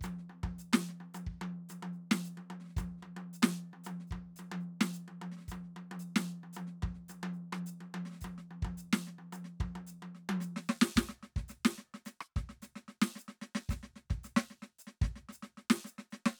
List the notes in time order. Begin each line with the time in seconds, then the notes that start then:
0.01 kick, hi-hat pedal, high tom
0.19 snare
0.29 high tom
0.43 kick, high tom
0.58 hi-hat pedal
0.73 snare, high tom
0.89 snare
0.94 snare
1.00 high tom
1.14 hi-hat pedal, high tom
1.26 kick
1.41 high tom
1.69 hi-hat pedal, high tom
1.82 high tom
1.93 hi-hat pedal
2.11 snare, high tom
2.25 hi-hat pedal
2.37 high tom
2.50 high tom
2.60 snare
2.64 snare
2.69 snare
2.76 kick, hi-hat pedal, high tom
2.98 snare
3.00 snare, high tom
3.16 high tom
3.33 hi-hat pedal
3.42 snare, high tom
3.73 high tom
3.84 hi-hat pedal, high tom
4.00 snare
4.07 kick, hi-hat pedal
4.12 high tom
4.36 hi-hat pedal, high tom
4.52 high tom
4.60 hi-hat pedal
4.81 snare, high tom
4.93 hi-hat pedal
5.08 high tom
5.21 high tom
5.32 snare
5.37 snare
5.40 snare
5.45 kick, snare, hi-hat pedal
5.52 high tom
5.64 snare
5.76 high tom
5.91 high tom
5.99 hi-hat pedal
6.16 snare, high tom
6.43 high tom
6.53 hi-hat pedal, high tom
6.67 snare
6.82 kick, high tom
6.95 snare
7.08 hi-hat pedal, high tom
7.23 high tom
7.33 hi-hat pedal
7.52 cross-stick, high tom
7.66 hi-hat pedal
7.80 high tom
7.94 high tom
8.05 snare
8.10 snare
8.12 snare
8.15 snare
8.21 kick, hi-hat pedal, high tom
8.38 snare
8.51 high tom
8.62 kick, high tom
8.77 hi-hat pedal
8.93 snare, high tom
9.07 snare
9.18 high tom
9.32 hi-hat pedal, high tom
9.44 snare
9.60 kick, high tom
9.75 high tom
9.87 snare, hi-hat pedal
10.02 high tom
10.15 snare
10.29 high tom
10.40 snare, hi-hat pedal
10.56 snare
10.65 snare, hi-hat pedal
10.81 snare
10.96 kick, snare, hi-hat pedal
11.09 snare
11.23 snare
11.36 kick, snare
11.48 snare, hi-hat pedal
11.65 snare
11.78 snare
11.94 snare
12.05 snare, hi-hat pedal
12.21 cross-stick
12.36 kick, snare
12.49 snare
12.62 snare, hi-hat pedal
12.76 snare
12.88 snare
13.02 snare
13.15 snare, hi-hat pedal
13.28 snare
13.41 snare
13.55 snare
13.69 kick, snare, hi-hat pedal
13.83 snare
13.96 snare
14.10 kick, snare
14.23 snare, hi-hat pedal
14.36 snare
14.50 snare
14.62 snare
14.79 hi-hat pedal
14.87 snare
15.01 kick, snare
15.16 snare
15.29 snare, hi-hat pedal
15.42 snare
15.57 snare
15.70 snare
15.84 snare, hi-hat pedal
15.98 snare
16.10 snare, hi-hat pedal
16.26 snare